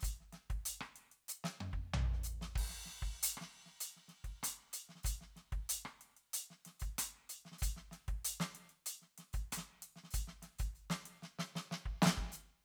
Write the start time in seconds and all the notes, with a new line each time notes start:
0.01 closed hi-hat, kick, hi-hat pedal
0.21 snare
0.33 snare, closed hi-hat
0.50 kick, closed hi-hat
0.66 closed hi-hat
0.81 cross-stick
0.96 closed hi-hat
1.12 closed hi-hat
1.29 hi-hat pedal
1.44 snare
1.61 high tom
1.73 kick
1.94 floor tom
2.13 snare
2.24 hi-hat pedal
2.42 snare
2.56 kick, crash
2.69 snare
2.86 snare
3.02 kick
3.23 closed hi-hat
3.37 cross-stick, snare
3.66 snare
3.81 closed hi-hat
3.97 snare
4.09 snare, closed hi-hat
4.24 kick, closed hi-hat
4.43 open hi-hat, cross-stick
4.48 cross-stick
4.74 open hi-hat
4.89 snare
4.96 snare
5.04 closed hi-hat, kick, hi-hat pedal
5.21 snare
5.36 snare, closed hi-hat
5.53 kick, closed hi-hat
5.70 closed hi-hat
5.86 cross-stick
6.01 closed hi-hat
6.17 closed hi-hat
6.34 closed hi-hat
6.51 snare
6.66 snare, closed hi-hat
6.80 closed hi-hat, kick
6.99 open hi-hat, cross-stick
7.30 open hi-hat
7.46 snare
7.52 snare
7.59 kick, hi-hat pedal
7.63 closed hi-hat
7.77 snare
7.92 snare, closed hi-hat
8.08 kick, closed hi-hat
8.25 closed hi-hat
8.40 snare
8.55 closed hi-hat
8.70 closed hi-hat
8.86 closed hi-hat
9.02 snare
9.18 snare, closed hi-hat
9.34 closed hi-hat, kick
9.53 open hi-hat, cross-stick
9.58 snare
9.83 open hi-hat
9.96 snare
10.04 snare
10.11 closed hi-hat, kick, hi-hat pedal
10.28 snare
10.43 snare, closed hi-hat
10.59 closed hi-hat, kick
10.76 closed hi-hat
10.90 snare
11.06 closed hi-hat
11.23 snare
11.39 snare
11.56 snare
11.72 snare
11.86 kick
12.02 snare
12.06 snare
12.18 kick
12.32 hi-hat pedal